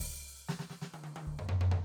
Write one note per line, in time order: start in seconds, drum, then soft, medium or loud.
0.02 open hi-hat loud
0.02 kick soft
0.49 snare medium
0.59 snare medium
0.70 snare soft
0.82 snare medium
0.94 high tom medium
1.04 high tom medium
1.16 high tom medium
1.27 kick soft
1.39 floor tom medium
1.49 floor tom loud
1.61 floor tom loud
1.72 floor tom loud